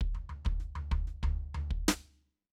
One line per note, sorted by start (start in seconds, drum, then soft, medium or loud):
0.01 kick medium
0.15 floor tom medium
0.29 floor tom medium
0.45 kick medium
0.45 floor tom medium
0.60 snare soft
0.75 floor tom medium
0.91 kick medium
0.91 floor tom medium
1.07 snare soft
1.23 kick medium
1.23 floor tom medium
1.54 floor tom medium
1.71 kick medium
1.88 snare loud